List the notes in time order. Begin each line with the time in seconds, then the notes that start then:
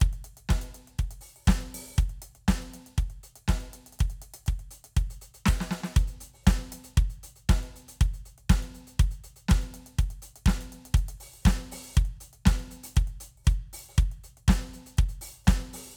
0.01 kick, closed hi-hat
0.14 closed hi-hat
0.25 closed hi-hat
0.38 closed hi-hat
0.50 kick, snare
0.62 closed hi-hat
0.75 closed hi-hat
0.88 closed hi-hat
0.99 kick, closed hi-hat
1.12 closed hi-hat
1.22 open hi-hat
1.37 open hi-hat
1.46 kick, snare, hi-hat pedal
1.62 closed hi-hat
1.75 open hi-hat
1.89 open hi-hat
1.96 kick, closed hi-hat, hi-hat pedal
2.10 closed hi-hat
2.23 closed hi-hat
2.36 closed hi-hat
2.49 kick, snare
2.63 closed hi-hat
2.74 closed hi-hat
2.87 closed hi-hat
2.99 kick, closed hi-hat
3.11 closed hi-hat
3.24 closed hi-hat
3.36 closed hi-hat
3.49 kick, snare
3.61 closed hi-hat
3.74 closed hi-hat
3.87 closed hi-hat
3.93 closed hi-hat
4.00 kick, closed hi-hat
4.11 closed hi-hat
4.23 closed hi-hat
4.35 closed hi-hat
4.47 kick, closed hi-hat
4.60 closed hi-hat
4.72 closed hi-hat
4.85 closed hi-hat
4.97 kick, closed hi-hat
5.11 closed hi-hat
5.22 closed hi-hat
5.35 closed hi-hat
5.46 kick, snare
5.61 snare
5.72 snare
5.84 snare
5.97 closed hi-hat, kick
6.08 closed hi-hat
6.21 open hi-hat
6.34 open hi-hat
6.44 kick, snare, hi-hat pedal
6.59 closed hi-hat
6.68 kick
6.73 closed hi-hat
6.85 closed hi-hat
6.98 kick, closed hi-hat
7.11 closed hi-hat
7.24 closed hi-hat
7.37 closed hi-hat
7.50 kick, snare
7.64 closed hi-hat
7.70 kick
7.77 closed hi-hat
7.89 closed hi-hat
8.02 kick, closed hi-hat
8.14 closed hi-hat
8.26 closed hi-hat
8.39 closed hi-hat
8.50 kick, snare
8.63 closed hi-hat
8.75 closed hi-hat
8.88 closed hi-hat
9.00 kick, closed hi-hat
9.12 closed hi-hat
9.25 closed hi-hat
9.37 closed hi-hat
9.49 kick, snare
9.61 closed hi-hat
9.75 closed hi-hat
9.87 closed hi-hat
9.99 kick, closed hi-hat
10.11 closed hi-hat
10.23 closed hi-hat
10.37 closed hi-hat
10.47 kick, snare
10.62 closed hi-hat
10.73 closed hi-hat
10.86 closed hi-hat
10.95 kick, closed hi-hat
11.09 closed hi-hat
11.21 open hi-hat
11.34 open hi-hat
11.43 kick, hi-hat pedal
11.47 snare
11.59 closed hi-hat
11.72 open hi-hat
11.85 open hi-hat
11.94 kick, closed hi-hat, hi-hat pedal
12.06 closed hi-hat
12.18 closed hi-hat, kick
12.34 closed hi-hat
12.46 kick, snare
12.60 closed hi-hat
12.72 closed hi-hat
12.84 closed hi-hat
12.97 kick, closed hi-hat
13.08 closed hi-hat
13.21 closed hi-hat
13.38 open hi-hat
13.45 kick, hi-hat pedal
13.50 closed hi-hat
13.74 open hi-hat
13.89 open hi-hat
13.95 kick, hi-hat pedal
14.00 closed hi-hat
14.12 closed hi-hat
14.25 closed hi-hat
14.38 closed hi-hat
14.49 kick, snare
14.63 closed hi-hat
14.69 kick
14.74 closed hi-hat
14.87 closed hi-hat
14.98 kick, closed hi-hat
15.10 closed hi-hat
15.22 open hi-hat
15.37 open hi-hat
15.45 kick, snare, hi-hat pedal
15.61 closed hi-hat
15.66 kick
15.74 open hi-hat
15.88 open hi-hat
15.93 hi-hat pedal